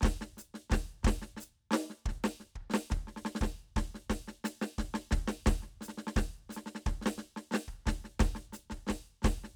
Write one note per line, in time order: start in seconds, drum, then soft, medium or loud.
0.01 kick loud
0.01 snare medium
0.05 snare medium
0.21 snare soft
0.37 snare soft
0.37 hi-hat pedal medium
0.54 snare soft
0.70 kick loud
0.70 snare soft
0.72 snare medium
1.03 kick loud
1.03 snare soft
1.07 snare loud
1.22 snare soft
1.37 snare soft
1.37 hi-hat pedal medium
1.71 snare medium
1.73 snare loud
1.90 snare soft
2.06 kick medium
2.06 snare soft
2.24 snare medium
2.40 snare soft
2.55 kick soft
2.70 snare medium
2.74 snare loud
2.90 kick medium
2.90 snare soft
3.07 snare soft
3.16 snare soft
3.25 snare medium
3.35 snare medium
3.41 kick medium
3.41 snare medium
3.76 kick medium
3.76 snare medium
3.94 snare soft
4.10 kick medium
4.10 snare medium
4.28 snare soft
4.44 snare medium
4.44 hi-hat pedal medium
4.62 snare medium
4.78 kick medium
4.78 snare medium
4.94 snare medium
5.11 kick loud
5.11 snare medium
5.28 snare medium
5.46 kick loud
5.46 snare loud
5.62 snare soft
5.81 snare soft
5.81 hi-hat pedal medium
5.88 snare soft
5.98 snare soft
6.07 snare medium
6.16 kick medium
6.16 snare medium
6.49 snare soft
6.49 hi-hat pedal medium
6.57 snare soft
6.66 snare soft
6.75 snare soft
6.86 kick medium
6.86 snare soft
7.01 snare soft
7.06 snare loud
7.18 snare soft
7.36 snare soft
7.51 snare medium
7.54 snare medium
7.68 kick soft
7.86 kick medium
7.86 snare soft
7.87 snare medium
8.04 snare soft
8.20 kick loud
8.20 snare medium
8.35 snare soft
8.53 snare soft
8.53 hi-hat pedal medium
8.70 kick soft
8.70 snare soft
8.87 snare medium
8.89 kick soft
8.89 snare medium
9.22 kick loud
9.22 snare soft
9.25 snare medium
9.44 snare soft